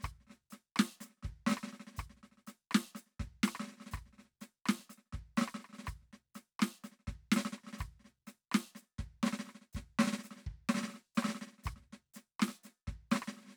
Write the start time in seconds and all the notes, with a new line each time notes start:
0.01 snare, hi-hat pedal
0.05 kick, cross-stick
0.22 snare
0.28 snare
0.31 snare
0.52 snare, hi-hat pedal
0.77 cross-stick, snare
1.02 snare, hi-hat pedal
1.05 snare
1.11 snare
1.19 snare
1.24 kick, snare
1.48 snare, hi-hat pedal
1.51 snare
1.53 snare
1.58 cross-stick
1.64 snare
1.68 snare
1.74 snare
1.81 snare
1.88 snare
1.92 snare
1.95 snare, hi-hat pedal
2.00 kick, cross-stick
2.11 snare
2.18 snare
2.24 snare
2.33 snare
2.39 snare
2.48 snare, hi-hat pedal
2.72 cross-stick, snare
2.96 snare, hi-hat pedal
3.07 snare
3.12 snare
3.21 kick, snare
3.29 kick
3.44 snare, hi-hat pedal
3.49 cross-stick
3.56 cross-stick
3.61 snare
3.64 snare
3.69 snare
3.73 snare
3.79 snare
3.81 snare
3.87 snare
3.92 kick, cross-stick, snare, hi-hat pedal
3.99 kick, cross-stick
4.07 snare
4.14 snare
4.18 snare
4.26 snare
4.42 snare, hi-hat pedal
4.67 cross-stick, snare
4.80 snare
4.91 snare, hi-hat pedal
4.99 snare
5.07 snare
5.14 kick, snare
5.20 kick
5.38 snare, hi-hat pedal
5.43 snare
5.49 cross-stick
5.56 snare
5.60 snare
5.66 cross-stick
5.70 snare
5.74 snare
5.80 snare
5.85 cross-stick, snare, hi-hat pedal
5.89 kick
6.03 snare
6.14 snare
6.36 snare, hi-hat pedal
6.61 cross-stick, snare
6.85 snare, hi-hat pedal
6.93 snare
7.01 snare
7.08 kick, snare
7.33 snare, hi-hat pedal
7.38 snare
7.40 snare
7.46 snare
7.54 snare
7.59 cross-stick
7.65 snare
7.68 snare
7.74 snare
7.78 kick, cross-stick, snare, hi-hat pedal
8.01 snare
8.05 snare
8.28 snare, hi-hat pedal
8.53 cross-stick, snare
8.76 snare, hi-hat pedal
8.83 snare
9.00 kick, snare
9.24 snare, hi-hat pedal
9.27 cross-stick, snare
9.34 snare
9.40 snare
9.45 snare
9.48 cross-stick, snare
9.56 snare
9.63 snare
9.74 kick, snare, hi-hat pedal
10.00 snare
10.02 snare
10.05 snare
10.08 snare
10.12 snare
10.14 snare
10.20 snare
10.25 snare, hi-hat pedal
10.32 snare
10.37 snare
10.39 snare
10.44 kick, snare
10.48 snare
10.70 snare, hi-hat pedal
10.76 snare
10.78 snare
10.82 snare
10.84 snare
10.89 snare
10.91 snare
10.95 snare
11.16 snare, hi-hat pedal
11.24 cross-stick, snare
11.29 snare
11.31 snare
11.36 snare
11.43 snare
11.48 snare
11.54 snare
11.59 snare
11.64 kick, cross-stick, snare, hi-hat pedal
11.72 kick
11.75 kick, snare
11.83 snare
11.94 snare
12.15 snare, hi-hat pedal
12.41 cross-stick, snare
12.49 snare
12.64 snare, hi-hat pedal
12.66 snare
12.89 kick, snare
12.94 kick
13.12 snare, hi-hat pedal
13.16 cross-stick, snare
13.23 cross-stick
13.29 snare
13.33 snare
13.38 snare
13.42 snare
13.45 snare
13.47 snare
13.49 snare
13.52 snare